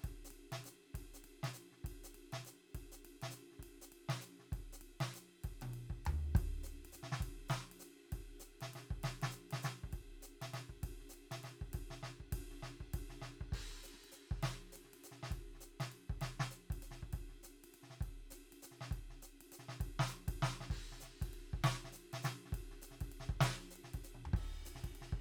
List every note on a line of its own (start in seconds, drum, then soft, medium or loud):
0.01 kick soft
0.01 snare soft
0.01 ride medium
0.25 hi-hat pedal medium
0.31 ride soft
0.53 snare medium
0.53 ride medium
0.65 hi-hat pedal medium
0.65 ride soft
0.83 snare soft
0.95 kick soft
0.95 ride medium
1.15 hi-hat pedal medium
1.25 ride soft
1.44 snare medium
1.44 ride medium
1.54 hi-hat pedal medium
1.54 ride soft
1.73 snare soft
1.85 kick soft
1.85 ride medium
2.04 hi-hat pedal medium
2.15 ride soft
2.33 snare medium
2.33 ride soft
2.46 hi-hat pedal medium
2.46 ride soft
2.69 hi-hat pedal soft
2.75 kick soft
2.75 ride medium
2.93 hi-hat pedal medium
3.06 ride soft
3.22 snare medium
3.22 ride soft
3.31 hi-hat pedal medium
3.31 ride soft
3.52 snare soft
3.60 kick soft
3.60 ride medium
3.82 hi-hat pedal medium
3.93 ride soft
4.10 snare medium
4.10 ride soft
4.22 hi-hat pedal medium
4.22 ride soft
4.40 snare soft
4.53 kick medium
4.53 ride soft
4.73 hi-hat pedal medium
4.82 ride soft
5.01 snare medium
5.01 ride soft
5.15 hi-hat pedal medium
5.15 ride soft
5.44 kick soft
5.44 ride soft
5.62 high tom medium
5.62 ride soft
5.74 ride soft
5.91 kick soft
6.06 floor tom loud
6.06 ride medium
6.36 kick medium
6.36 ride medium
6.64 hi-hat pedal medium
6.64 ride soft
6.86 ride soft
6.93 hi-hat pedal medium
6.93 ride soft
7.04 snare soft
7.13 snare medium
7.21 kick medium
7.21 ride medium
7.49 snare medium
7.49 hi-hat pedal medium
7.49 ride medium
7.72 ride soft
7.80 hi-hat pedal medium
7.80 ride soft
8.05 snare soft
8.13 kick soft
8.13 ride medium
8.40 hi-hat pedal medium
8.40 ride soft
8.62 snare medium
8.62 ride soft
8.74 snare soft
8.74 ride soft
8.91 kick medium
9.04 snare medium
9.04 ride medium
9.22 snare medium
9.22 ride medium
9.32 hi-hat pedal medium
9.52 snare medium
9.52 ride medium
9.63 snare medium
9.63 hi-hat pedal medium
9.63 ride medium
9.84 kick soft
9.93 kick soft
9.93 ride soft
10.23 hi-hat pedal medium
10.23 ride soft
10.42 snare medium
10.42 ride soft
10.54 snare medium
10.54 ride soft
10.70 kick soft
10.84 kick soft
10.84 ride medium
11.00 snare soft
11.10 hi-hat pedal medium
11.14 ride soft
11.32 snare medium
11.32 ride soft
11.44 snare soft
11.44 ride soft
11.62 kick soft
11.74 kick soft
11.74 ride medium
11.91 snare soft
12.04 snare medium
12.21 kick soft
12.33 kick medium
12.33 ride medium
12.51 snare soft
12.63 snare soft
12.81 kick soft
12.94 kick medium
12.94 ride medium
13.10 snare soft
13.22 snare soft
13.41 kick soft
13.53 kick medium
13.53 crash medium
13.70 snare soft
13.84 hi-hat pedal medium
13.84 ride soft
13.94 cross-stick soft
14.05 ride soft
14.12 hi-hat pedal medium
14.12 ride soft
14.32 kick medium
14.43 snare medium
14.43 ride medium
14.73 hi-hat pedal medium
14.73 ride soft
14.85 snare soft
14.94 ride soft
15.05 hi-hat pedal medium
15.05 ride soft
15.12 snare soft
15.24 snare medium
15.31 kick medium
15.31 ride soft
15.55 snare soft
15.61 hi-hat pedal medium
15.61 ride soft
15.81 snare medium
15.81 ride soft
15.93 ride soft
16.10 kick medium
16.22 snare medium
16.22 ride medium
16.40 snare medium
16.51 hi-hat pedal medium
16.51 ride soft
16.71 kick medium
16.71 ride medium
16.83 hi-hat pedal medium
16.83 ride soft
16.92 snare soft
17.03 kick soft
17.14 kick medium
17.14 ride medium
17.30 snare soft
17.44 hi-hat pedal medium
17.44 ride soft
17.65 ride soft
17.84 snare soft
17.91 snare soft
18.01 kick medium
18.01 ride soft
18.31 hi-hat pedal medium
18.31 ride medium
18.53 ride soft
18.63 hi-hat pedal medium
18.63 ride soft
18.72 snare soft
18.82 snare soft
18.92 kick medium
18.92 ride soft
19.11 snare soft
19.23 hi-hat pedal medium
19.23 ride soft
19.41 ride soft
19.53 hi-hat pedal medium
19.53 ride soft
19.60 snare soft
19.69 snare soft
19.81 kick medium
19.81 ride medium
20.00 snare medium
20.08 hi-hat pedal medium
20.12 ride soft
20.29 kick medium
20.29 ride medium
20.43 snare medium
20.61 snare soft
20.71 kick medium
20.71 crash medium
20.92 snare soft
21.01 snare soft
21.01 hi-hat pedal medium
21.22 kick medium
21.22 ride medium
21.34 ride soft
21.54 kick medium
21.64 snare loud
21.64 ride medium
21.85 snare soft
21.93 hi-hat pedal medium
21.93 ride soft
22.14 snare medium
22.14 ride soft
22.23 snare medium
22.23 hi-hat pedal medium
22.23 ride medium
22.46 snare soft
22.53 kick medium
22.53 ride medium
22.72 snare soft
22.82 hi-hat pedal medium
22.82 ride medium
22.92 snare soft
23.01 kick soft
23.01 ride soft
23.12 ride soft
23.21 snare soft
23.30 kick medium
23.41 snare loud
23.41 ride medium
23.71 hi-hat pedal medium
23.76 ride soft
23.85 snare soft
23.94 kick soft
23.94 ride soft
24.05 hi-hat pedal medium
24.05 ride soft
24.15 high tom soft
24.26 floor tom medium
24.34 kick medium
24.34 crash soft
24.66 hi-hat pedal medium
24.66 ride medium
24.76 snare soft
24.84 kick soft
24.84 ride soft
24.96 ride soft
25.02 snare soft
25.13 kick medium